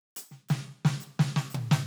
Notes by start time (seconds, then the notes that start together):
0.16 percussion
0.31 snare
0.49 snare, percussion
0.67 snare
0.85 snare
1.00 snare, percussion
1.19 snare
1.36 snare
1.50 percussion
1.54 high tom
1.71 snare